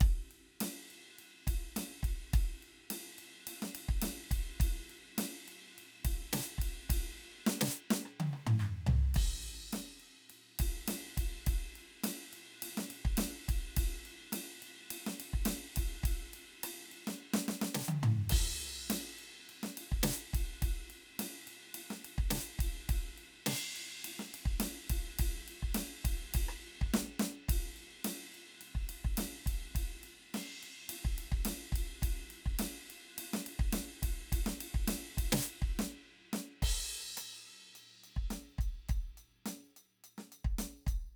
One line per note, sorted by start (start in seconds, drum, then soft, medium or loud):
0.01 kick loud
0.01 ride medium
0.31 ride soft
0.61 snare medium
0.61 ride loud
0.91 ride soft
1.19 ride medium
1.47 kick medium
1.47 ride loud
1.77 snare medium
1.77 ride loud
2.03 kick medium
2.03 ride medium
2.34 kick medium
2.34 ride medium
2.63 ride soft
2.91 snare medium
2.91 ride loud
3.19 ride medium
3.47 ride loud
3.63 snare medium
3.75 ride medium
3.89 kick medium
4.02 snare medium
4.02 ride loud
4.31 kick medium
4.31 ride medium
4.60 kick medium
4.60 ride loud
4.90 ride soft
5.18 snare loud
5.18 ride loud
5.48 ride medium
5.78 ride medium
6.05 kick medium
6.05 ride loud
6.33 snare loud
6.33 ride loud
6.59 kick medium
6.59 ride medium
6.90 kick medium
6.90 ride loud
7.47 snare loud
7.61 snare loud
7.91 snare loud
8.06 cross-stick medium
8.20 high tom loud
8.34 high tom medium
8.47 mid tom loud
8.60 percussion medium
8.87 floor tom loud
9.15 kick medium
9.15 ride medium
9.15 crash medium
9.43 ride soft
9.73 snare medium
9.73 ride medium
10.00 ride soft
10.30 ride medium
10.59 kick medium
10.59 ride loud
10.88 snare medium
10.88 ride loud
11.18 kick medium
11.18 ride medium
11.47 kick medium
11.47 ride loud
11.76 ride medium
12.04 snare medium
12.04 ride loud
12.33 ride medium
12.63 ride loud
12.78 snare medium
12.91 ride medium
13.05 kick medium
13.18 snare loud
13.18 ride loud
13.49 kick medium
13.49 ride medium
13.77 kick medium
13.77 ride loud
14.06 ride medium
14.33 snare medium
14.33 ride loud
14.63 ride medium
14.91 ride loud
15.07 snare medium
15.20 ride medium
15.34 kick medium
15.46 snare loud
15.46 ride loud
15.76 kick medium
15.76 ride loud
16.04 kick medium
16.04 ride loud
16.34 ride medium
16.64 cross-stick medium
16.64 ride loud
16.92 ride medium
17.08 snare medium
17.34 snare loud
17.49 snare medium
17.62 snare loud
17.75 snare medium
17.88 high tom loud
18.03 mid tom loud
18.30 kick medium
18.30 ride loud
18.30 crash loud
18.60 ride soft
18.90 snare loud
18.90 ride loud
19.19 ride soft
19.50 ride medium
19.63 snare medium
19.78 ride medium
19.92 kick medium
20.03 snare loud
20.03 ride loud
20.34 kick medium
20.34 ride medium
20.62 kick medium
20.62 ride medium
20.90 ride medium
21.20 snare medium
21.20 ride loud
21.48 ride medium
21.75 ride loud
21.91 snare medium
22.05 ride medium
22.18 kick medium
22.31 snare loud
22.31 ride loud
22.59 kick medium
22.59 ride loud
22.89 kick medium
22.89 ride loud
23.18 ride medium
23.47 snare loud
23.47 ride loud
23.76 ride medium
24.05 ride loud
24.20 snare medium
24.34 ride medium
24.46 kick medium
24.60 snare loud
24.60 ride loud
24.90 kick medium
24.90 ride loud
25.19 kick medium
25.19 ride loud
25.48 ride medium
25.63 kick soft
25.75 snare loud
25.75 ride loud
26.05 kick medium
26.05 ride loud
26.34 kick medium
26.34 ride loud
26.49 cross-stick medium
26.82 kick medium
26.86 kick soft
26.94 snare loud
27.20 snare loud
27.49 kick medium
27.49 ride loud
27.77 ride soft
28.05 snare medium
28.05 ride loud
28.35 ride soft
28.61 ride medium
28.75 kick soft
28.89 ride medium
29.05 kick medium
29.18 snare medium
29.18 ride loud
29.46 kick medium
29.46 ride medium
29.75 kick medium
29.75 ride loud
30.04 ride medium
30.34 snare medium
30.34 ride medium
30.63 ride medium
30.90 ride loud
31.05 kick medium
31.18 ride medium
31.32 kick medium
31.45 snare medium
31.45 ride loud
31.73 kick medium
31.73 ride medium
32.03 kick medium
32.03 ride loud
32.31 ride medium
32.46 kick medium
32.59 snare medium
32.59 ride loud
32.90 ride medium
33.18 ride loud
33.34 snare loud
33.47 ride medium
33.60 kick medium
33.73 snare loud
33.73 ride loud
34.03 kick medium
34.03 ride loud
34.32 kick medium
34.32 ride loud
34.47 snare loud
34.61 ride loud
34.75 kick medium
34.88 snare loud
34.88 ride loud
35.18 kick medium
35.18 ride loud
35.33 snare loud
35.46 ride medium
35.62 kick medium
35.79 snare loud
36.33 snare loud
36.63 kick medium
36.63 crash loud
37.17 cross-stick medium
37.17 closed hi-hat loud
37.48 closed hi-hat soft
37.75 closed hi-hat medium
38.04 closed hi-hat medium
38.17 kick soft
38.31 snare medium
38.31 closed hi-hat medium
38.59 kick medium
38.59 closed hi-hat medium
38.89 kick medium
38.89 closed hi-hat medium
39.18 closed hi-hat medium
39.46 closed hi-hat medium
39.46 snare medium
39.77 closed hi-hat medium
40.04 closed hi-hat medium
40.18 snare medium
40.32 closed hi-hat medium
40.45 kick medium
40.59 closed hi-hat loud
40.59 snare medium
40.87 kick medium
40.87 closed hi-hat medium